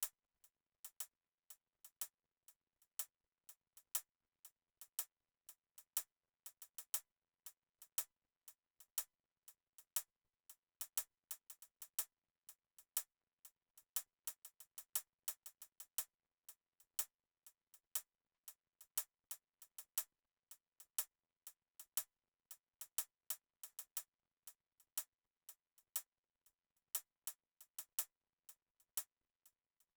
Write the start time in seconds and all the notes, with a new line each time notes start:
0.03 closed hi-hat
0.44 closed hi-hat
0.84 closed hi-hat
1.00 closed hi-hat
1.50 closed hi-hat
1.85 closed hi-hat
2.01 closed hi-hat
2.48 closed hi-hat
2.82 closed hi-hat
2.99 closed hi-hat
3.49 closed hi-hat
3.77 closed hi-hat
3.95 closed hi-hat
4.45 closed hi-hat
4.81 closed hi-hat
4.99 closed hi-hat
5.49 closed hi-hat
5.78 closed hi-hat
5.97 closed hi-hat
6.46 closed hi-hat
6.62 closed hi-hat
6.78 closed hi-hat
6.94 closed hi-hat
7.46 closed hi-hat
7.82 closed hi-hat
7.98 closed hi-hat
8.48 closed hi-hat
8.80 closed hi-hat
8.98 closed hi-hat
9.48 closed hi-hat
9.78 closed hi-hat
9.96 closed hi-hat
10.49 closed hi-hat
10.81 closed hi-hat
10.97 closed hi-hat
11.31 closed hi-hat
11.50 closed hi-hat
11.62 closed hi-hat
11.82 closed hi-hat
11.99 closed hi-hat
12.49 closed hi-hat
12.78 closed hi-hat
12.97 closed hi-hat
13.45 closed hi-hat
13.78 closed hi-hat
13.96 closed hi-hat
14.27 closed hi-hat
14.45 closed hi-hat
14.60 closed hi-hat
14.78 closed hi-hat
14.95 closed hi-hat
15.28 closed hi-hat
15.46 closed hi-hat
15.62 closed hi-hat
15.80 closed hi-hat
15.98 closed hi-hat
16.49 closed hi-hat
16.80 closed hi-hat
16.99 closed hi-hat
17.46 closed hi-hat
17.74 closed hi-hat
17.95 closed hi-hat
18.48 closed hi-hat
18.81 closed hi-hat
18.98 closed hi-hat
19.31 closed hi-hat
19.62 closed hi-hat
19.78 closed hi-hat
19.98 closed hi-hat
20.51 closed hi-hat
20.80 open hi-hat
20.98 closed hi-hat
21.47 closed hi-hat
21.80 closed hi-hat
21.97 closed hi-hat
22.51 closed hi-hat
22.81 closed hi-hat
22.98 closed hi-hat
23.30 closed hi-hat
23.63 open hi-hat
23.79 closed hi-hat
23.97 closed hi-hat
24.47 open hi-hat
24.80 closed hi-hat
24.98 closed hi-hat
25.49 closed hi-hat
25.78 closed hi-hat
25.96 closed hi-hat
26.46 closed hi-hat
26.77 closed hi-hat
26.95 closed hi-hat
27.27 closed hi-hat
27.61 closed hi-hat
27.79 closed hi-hat
27.99 closed hi-hat
28.49 closed hi-hat
28.80 closed hi-hat
28.97 closed hi-hat
29.46 closed hi-hat
29.80 closed hi-hat